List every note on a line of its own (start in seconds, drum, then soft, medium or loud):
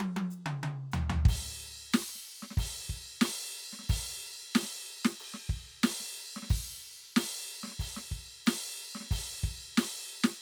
0.01 high tom loud
0.17 high tom loud
0.31 hi-hat pedal medium
0.47 mid tom loud
0.64 mid tom loud
0.92 floor tom loud
0.92 hi-hat pedal medium
1.10 floor tom loud
1.26 kick loud
1.26 crash loud
1.60 kick soft
1.60 ride soft
1.94 snare loud
1.94 crash loud
2.03 cross-stick soft
2.10 cross-stick soft
2.16 snare soft
2.28 ride soft
2.43 snare soft
2.51 snare soft
2.58 kick medium
2.58 crash loud
2.90 kick soft
3.22 cross-stick medium
3.22 snare loud
3.22 crash loud
3.57 hi-hat pedal soft
3.73 snare soft
3.80 snare soft
3.84 snare soft
3.90 kick medium
3.90 crash loud
4.55 snare loud
4.55 crash loud
4.64 snare soft
5.05 snare loud
5.21 crash medium
5.35 snare soft
5.50 kick medium
5.84 snare loud
5.84 crash loud
5.92 cross-stick soft
6.01 snare soft
6.18 hi-hat pedal medium
6.37 snare soft
6.43 snare soft
6.47 kick medium
6.47 snare soft
6.47 crash loud
7.17 snare loud
7.17 crash loud
7.64 snare soft
7.68 snare soft
7.71 cross-stick soft
7.71 snare soft
7.80 kick medium
7.80 crash medium
7.97 snare soft
8.12 kick medium
8.47 snare loud
8.47 crash loud
8.96 snare soft
9.01 snare soft
9.05 snare soft
9.12 kick medium
9.12 crash loud
9.44 kick medium
9.78 snare loud
9.78 crash loud
9.84 cross-stick medium
10.24 snare loud